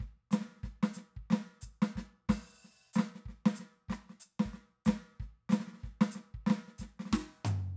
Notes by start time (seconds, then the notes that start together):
0.01 kick, snare
0.32 snare, hi-hat pedal
0.34 snare
0.41 snare
0.45 snare
0.50 snare
0.54 snare
0.57 snare
0.64 kick, snare
0.84 snare
0.94 snare, hi-hat pedal
1.17 kick
1.31 snare
1.33 snare
1.62 kick, hi-hat pedal
1.67 snare
1.83 snare
1.97 kick, snare
2.30 open hi-hat, kick, snare
2.65 snare
2.94 snare, hi-hat pedal
2.99 snare
3.16 snare
3.26 kick, snare
3.47 snare
3.56 hi-hat pedal
3.60 snare
3.90 kick, snare
3.94 cross-stick
4.10 snare
4.21 snare, hi-hat pedal
4.40 snare
4.46 kick
4.54 snare
4.86 kick, snare, hi-hat pedal
4.89 snare
5.21 kick, snare
5.50 snare, hi-hat pedal
5.53 snare
5.61 snare
5.68 snare
5.74 snare
5.79 snare
5.84 kick, snare
6.02 snare
6.12 hi-hat pedal
6.16 snare
6.35 kick
6.47 snare
6.51 snare
6.69 snare
6.79 kick, snare, hi-hat pedal
7.00 snare
7.06 snare
7.12 kick, snare
7.14 snare
7.46 floor tom, hi-hat pedal